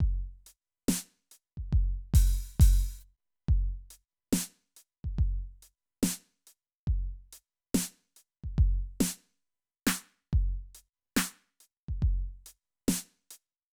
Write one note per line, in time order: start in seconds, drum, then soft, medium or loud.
0.01 kick medium
0.01 snare soft
0.01 crash soft
0.01 ride soft
0.47 closed hi-hat medium
0.89 snare loud
1.32 closed hi-hat medium
1.58 kick soft
1.73 kick medium
2.14 open hi-hat loud
2.14 kick loud
2.56 kick soft
2.60 open hi-hat loud
2.60 kick loud
2.60 snare soft
2.99 hi-hat pedal soft
3.49 kick medium
3.91 closed hi-hat medium
4.33 snare loud
4.77 closed hi-hat medium
5.05 kick soft
5.19 kick medium
5.19 snare soft
5.19 crash soft
5.63 closed hi-hat medium
6.03 snare loud
6.48 closed hi-hat medium
6.88 kick medium
7.33 closed hi-hat medium
7.75 snare loud
8.17 closed hi-hat medium
8.44 kick soft
8.59 kick medium
8.59 snare soft
8.59 crash soft
8.59 ride soft
9.01 snare loud
9.87 snare loud
10.34 kick medium
10.34 snare soft
10.75 closed hi-hat medium
11.17 snare loud
11.61 closed hi-hat soft
11.89 kick soft
12.03 kick medium
12.03 crash soft
12.03 ride soft
12.47 closed hi-hat medium
12.89 snare loud
13.31 closed hi-hat loud